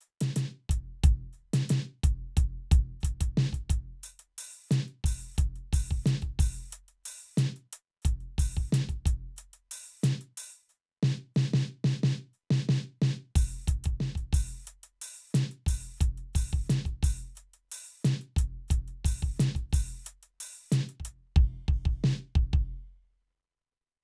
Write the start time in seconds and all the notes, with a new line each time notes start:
0.01 hi-hat pedal
0.21 snare, closed hi-hat
0.36 closed hi-hat, snare
0.70 closed hi-hat, kick
1.04 closed hi-hat, kick
1.33 hi-hat pedal
1.54 closed hi-hat, snare
1.70 closed hi-hat, snare
2.04 closed hi-hat, kick
2.37 closed hi-hat, kick
2.72 open hi-hat, kick
3.01 kick, hi-hat pedal
3.05 closed hi-hat
3.21 closed hi-hat, kick
3.38 snare
3.53 kick, closed hi-hat
3.70 open hi-hat, kick
4.03 open hi-hat, hi-hat pedal
4.19 closed hi-hat
4.38 open hi-hat
4.68 closed hi-hat, snare, hi-hat pedal
4.88 closed hi-hat
5.04 open hi-hat, kick
5.35 closed hi-hat, kick, hi-hat pedal
5.56 closed hi-hat
5.73 open hi-hat, kick
5.91 kick
6.03 closed hi-hat, snare, hi-hat pedal
6.22 kick, closed hi-hat
6.39 open hi-hat, kick
6.71 closed hi-hat, hi-hat pedal
6.88 closed hi-hat
7.04 open hi-hat, hi-hat pedal
7.36 closed hi-hat, snare, hi-hat pedal
7.56 closed hi-hat
7.73 open hi-hat
8.02 closed hi-hat, kick, hi-hat pedal
8.21 closed hi-hat
8.38 open hi-hat, kick
8.57 kick, open hi-hat
8.69 snare, hi-hat pedal
8.74 closed hi-hat
8.89 kick, closed hi-hat
9.06 open hi-hat, kick
9.37 closed hi-hat, hi-hat pedal
9.53 closed hi-hat
9.71 open hi-hat
10.02 closed hi-hat, snare, hi-hat pedal
10.21 closed hi-hat
10.38 open hi-hat
10.69 hi-hat pedal
11.03 snare
11.35 snare, hi-hat pedal
11.54 snare
11.85 snare
12.04 snare
12.33 hi-hat pedal
12.51 snare
12.69 snare
13.02 snare
13.36 open hi-hat, kick
13.64 kick, hi-hat pedal
13.68 closed hi-hat
13.84 closed hi-hat, kick
14.01 snare
14.15 kick, closed hi-hat
14.33 open hi-hat, kick
14.64 closed hi-hat, hi-hat pedal
14.83 closed hi-hat
15.02 open hi-hat
15.31 hi-hat pedal
15.35 closed hi-hat, snare
15.51 closed hi-hat
15.67 open hi-hat, kick
15.98 closed hi-hat, kick, hi-hat pedal
16.18 closed hi-hat
16.33 open hi-hat, kick, hi-hat pedal
16.53 kick
16.66 hi-hat pedal
16.70 closed hi-hat, snare
16.85 kick, closed hi-hat
17.03 open hi-hat, kick
17.35 closed hi-hat, hi-hat pedal
17.54 closed hi-hat
17.69 open hi-hat, hi-hat pedal
18.01 snare, hi-hat pedal
18.05 closed hi-hat
18.21 closed hi-hat
18.37 open hi-hat, kick
18.68 closed hi-hat, kick, hi-hat pedal
18.88 closed hi-hat
19.05 open hi-hat, kick
19.23 kick
19.36 snare, hi-hat pedal
19.40 closed hi-hat
19.55 kick, closed hi-hat
19.70 kick, hi-hat pedal
19.74 open hi-hat
20.05 closed hi-hat, hi-hat pedal
20.23 closed hi-hat
20.40 open hi-hat
20.70 closed hi-hat, snare, hi-hat pedal
20.89 closed hi-hat
21.00 kick
21.05 open hi-hat
21.36 kick
21.41 ride
21.68 kick
21.73 crash, ride
21.86 kick
21.90 crash, ride
22.04 snare
22.36 kick
22.53 kick
22.59 ride